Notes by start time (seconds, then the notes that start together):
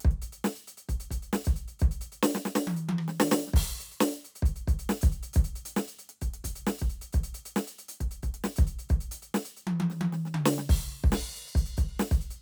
0.01 closed hi-hat
0.05 kick
0.11 closed hi-hat
0.22 closed hi-hat
0.33 closed hi-hat
0.45 snare
0.56 closed hi-hat
0.68 closed hi-hat
0.78 closed hi-hat
0.89 closed hi-hat, kick
1.00 closed hi-hat
1.11 closed hi-hat, kick
1.23 closed hi-hat
1.33 snare
1.45 closed hi-hat, kick
1.56 closed hi-hat
1.68 closed hi-hat
1.80 closed hi-hat, kick
1.92 closed hi-hat
2.12 closed hi-hat
2.23 snare
2.35 snare
2.46 snare
2.56 snare
2.68 high tom
2.77 closed hi-hat
2.89 high tom
2.99 cross-stick
3.09 snare
3.20 snare
3.32 snare
3.48 snare
3.54 kick, crash
3.69 closed hi-hat
3.80 closed hi-hat
3.92 closed hi-hat
4.01 snare
4.13 closed hi-hat
4.25 closed hi-hat
4.36 closed hi-hat
4.43 kick
4.56 closed hi-hat
4.68 closed hi-hat, kick
4.79 closed hi-hat
4.90 snare
5.02 closed hi-hat, kick
5.12 closed hi-hat
5.23 closed hi-hat
5.34 closed hi-hat, kick
5.45 closed hi-hat
5.56 closed hi-hat
5.66 closed hi-hat
5.77 snare
5.88 closed hi-hat
5.99 closed hi-hat
6.10 closed hi-hat
6.22 closed hi-hat, kick
6.34 closed hi-hat
6.45 closed hi-hat, kick
6.56 closed hi-hat
6.67 snare
6.79 closed hi-hat, kick
6.90 closed hi-hat
7.02 closed hi-hat
7.13 closed hi-hat, kick
7.24 closed hi-hat
7.35 closed hi-hat
7.46 closed hi-hat
7.57 snare
7.68 closed hi-hat
7.79 closed hi-hat
7.89 closed hi-hat
8.01 kick, closed hi-hat
8.11 closed hi-hat
8.23 closed hi-hat, kick
8.35 closed hi-hat
8.44 snare
8.56 closed hi-hat, kick
8.67 closed hi-hat
8.79 closed hi-hat
8.90 closed hi-hat, kick
9.01 closed hi-hat
9.12 closed hi-hat
9.23 closed hi-hat
9.35 snare
9.45 closed hi-hat
9.57 closed hi-hat
9.67 high tom
9.80 high tom
9.90 snare
10.01 high tom
10.13 snare
10.26 snare
10.35 mid tom
10.46 snare
10.59 snare
10.70 kick, crash
10.79 closed hi-hat
11.04 kick
11.12 snare, crash
11.36 closed hi-hat
11.48 closed hi-hat
11.56 closed hi-hat, kick
11.66 closed hi-hat
11.78 closed hi-hat, kick
11.89 closed hi-hat
12.00 snare
12.12 closed hi-hat, kick
12.21 closed hi-hat
12.31 closed hi-hat